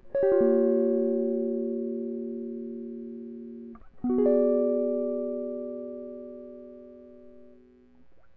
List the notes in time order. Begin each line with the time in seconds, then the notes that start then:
0.15 C#5
0.23 G4
0.32 F4
0.41 A#3
4.04 B3
4.10 F#4
4.18 G#4
4.26 D5